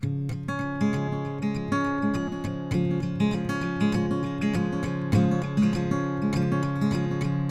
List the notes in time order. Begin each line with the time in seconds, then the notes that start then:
0.01 C#3 F3
0.30 C#3 F3
0.82 G#3
0.94 C#3 F3
1.26 F3
1.41 F3 G#3
1.56 F3
1.86 F3
2.04 G#3
2.15 F3
2.45 C#3 F3
2.72 C#3 F3
3.01 C#3 F3
3.21 G#3
3.33 F3 G#3
3.63 F3
3.82 G#3
3.93 C#3 F3
4.07 G#3
4.25 F3
4.43 G#3
4.55 F3 G#3
4.85 F3
5.13 C#3 F3 G#3 C#4
5.33 C#4
5.43 F3
5.59 G#3
5.64 F3
5.74 C#3 F3 G#3
5.92 C#4
6.34 C#3 F3 G#3
6.53 G#3 C#4
6.64 F3
6.83 G#3
6.92 C#3 F3 G#3
7.12 C#4
7.22 C#3 F3